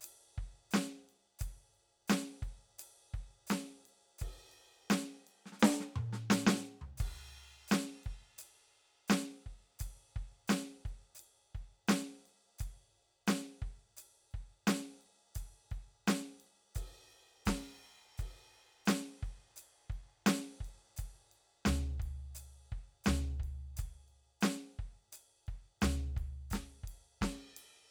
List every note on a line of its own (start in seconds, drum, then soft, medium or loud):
0.01 hi-hat pedal medium
0.01 ride medium
0.36 kick soft
0.36 ride soft
0.71 snare loud
0.71 hi-hat pedal medium
0.71 ride soft
1.09 ride soft
1.39 kick soft
1.39 hi-hat pedal medium
1.39 ride medium
1.74 ride soft
2.08 snare loud
2.08 hi-hat pedal medium
2.08 ride medium
2.42 kick soft
2.42 ride soft
2.79 hi-hat pedal medium
2.79 ride medium
3.14 kick soft
3.14 ride soft
3.47 snare medium
3.47 hi-hat pedal medium
3.47 ride medium
3.86 ride soft
4.19 kick soft
4.19 hi-hat pedal medium
4.19 crash soft
4.52 ride soft
4.90 snare loud
4.90 hi-hat pedal medium
4.90 ride medium
5.27 ride soft
5.46 snare soft
5.52 snare soft
5.58 snare soft
5.58 hi-hat pedal medium
5.63 snare loud
5.80 snare soft
5.96 mid tom loud
6.13 snare soft
6.30 snare loud
6.30 hi-hat pedal medium
6.47 snare loud
6.81 floor tom medium
6.98 kick medium
6.98 hi-hat pedal medium
6.98 crash medium
7.68 snare loud
7.68 hi-hat pedal medium
7.72 ride medium
8.04 kick soft
8.04 ride soft
8.38 hi-hat pedal medium
8.38 ride medium
9.08 snare loud
9.08 hi-hat pedal medium
9.08 ride medium
9.46 kick soft
9.79 kick soft
9.79 hi-hat pedal medium
9.79 ride medium
10.16 kick soft
10.16 ride soft
10.48 snare loud
10.48 hi-hat pedal medium
10.48 ride medium
10.85 kick soft
10.85 ride soft
11.15 hi-hat pedal medium
11.20 ride soft
11.55 kick soft
11.55 ride soft
11.88 snare loud
11.88 hi-hat pedal medium
11.88 ride medium
12.26 ride soft
12.59 kick soft
12.59 hi-hat pedal medium
12.59 ride soft
13.27 snare loud
13.27 hi-hat pedal medium
13.27 ride medium
13.62 kick soft
13.97 hi-hat pedal medium
13.97 ride medium
14.31 kick soft
14.31 ride soft
14.67 snare loud
14.67 hi-hat pedal medium
14.67 ride medium
15.01 ride soft
15.35 kick soft
15.35 hi-hat pedal medium
15.35 ride medium
15.71 kick soft
15.71 ride soft
16.07 snare loud
16.07 hi-hat pedal medium
16.07 ride medium
16.40 ride soft
16.75 kick soft
16.75 hi-hat pedal medium
16.75 crash soft
17.11 ride soft
17.46 kick soft
17.46 snare medium
17.46 hi-hat pedal medium
17.46 crash soft
17.84 ride soft
18.18 kick soft
18.18 hi-hat pedal soft
18.18 crash soft
18.86 snare loud
18.86 hi-hat pedal medium
18.86 ride medium
19.23 kick soft
19.23 ride soft
19.56 hi-hat pedal medium
19.56 ride soft
19.90 kick soft
19.90 ride soft
20.26 snare loud
20.26 hi-hat pedal medium
20.26 ride medium
20.61 kick soft
20.65 ride soft
20.97 kick soft
20.97 hi-hat pedal medium
20.97 ride medium
21.32 ride soft
21.65 snare loud
21.65 floor tom loud
21.65 hi-hat pedal medium
22.00 kick soft
22.00 ride soft
22.35 hi-hat pedal medium
22.35 ride medium
22.70 kick soft
22.70 ride soft
23.04 snare loud
23.04 floor tom loud
23.04 hi-hat pedal medium
23.40 kick soft
23.40 ride soft
23.77 kick soft
23.77 hi-hat pedal medium
23.77 ride soft
24.08 ride soft
24.41 snare loud
24.41 hi-hat pedal medium
24.41 ride medium
24.79 kick soft
25.12 hi-hat pedal medium
25.12 ride soft
25.47 kick soft
25.47 ride soft
25.82 snare loud
25.82 floor tom loud
25.82 hi-hat pedal medium
26.17 kick soft
26.17 ride soft
26.51 kick soft
26.51 snare medium
26.51 hi-hat pedal medium
26.51 ride medium
26.84 kick soft
26.88 ride soft
27.22 kick soft
27.22 snare medium
27.22 ride medium
27.57 ride medium